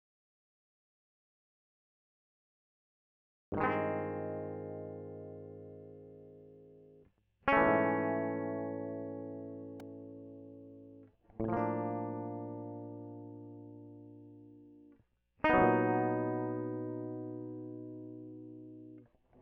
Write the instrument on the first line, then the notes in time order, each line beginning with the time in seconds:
electric guitar
3.51 G2
3.58 D#3 G#3
3.64 C4
7.48 C#4
7.52 A3
7.57 E3
7.68 G#2
11.41 A2
11.49 F3 A#3
11.57 D4
15.44 D#4
15.50 B3
15.54 F#3
15.63 A#2